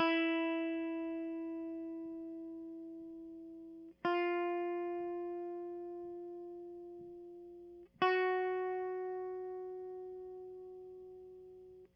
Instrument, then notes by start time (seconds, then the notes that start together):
electric guitar
0.00 E4
4.05 F4
8.02 F#4